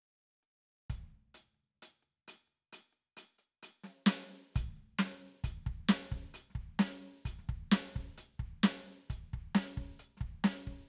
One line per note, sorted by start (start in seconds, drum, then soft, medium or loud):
0.43 closed hi-hat soft
0.90 closed hi-hat medium
0.90 kick soft
0.90 snare soft
1.10 closed hi-hat soft
1.34 closed hi-hat loud
1.54 closed hi-hat soft
1.82 closed hi-hat loud
2.02 closed hi-hat soft
2.28 closed hi-hat loud
2.47 closed hi-hat soft
2.73 closed hi-hat loud
2.93 closed hi-hat soft
3.17 closed hi-hat loud
3.38 closed hi-hat soft
3.63 closed hi-hat loud
3.84 closed hi-hat medium
3.84 snare soft
4.06 open hi-hat loud
4.06 snare loud
4.54 closed hi-hat loud
4.54 kick medium
4.54 hi-hat pedal medium
4.76 closed hi-hat soft
4.99 closed hi-hat loud
4.99 snare loud
5.19 closed hi-hat soft
5.44 closed hi-hat loud
5.44 kick medium
5.65 kick medium
5.65 closed hi-hat soft
5.89 closed hi-hat loud
5.89 snare loud
6.11 kick soft
6.34 closed hi-hat loud
6.50 snare soft
6.55 kick soft
6.55 closed hi-hat soft
6.79 closed hi-hat loud
6.79 snare loud
7.00 closed hi-hat soft
7.25 closed hi-hat loud
7.25 kick soft
7.39 snare soft
7.49 kick medium
7.71 closed hi-hat loud
7.71 snare loud
7.96 kick soft
8.18 closed hi-hat loud
8.39 kick soft
8.39 closed hi-hat soft
8.63 closed hi-hat loud
8.63 snare loud
9.10 closed hi-hat loud
9.10 kick soft
9.33 kick soft
9.55 closed hi-hat loud
9.55 snare loud
9.76 kick soft
9.76 closed hi-hat soft
9.99 closed hi-hat medium
10.17 kick soft
10.17 snare soft
10.21 closed hi-hat soft
10.44 closed hi-hat loud
10.44 snare loud
10.65 kick soft
10.65 closed hi-hat soft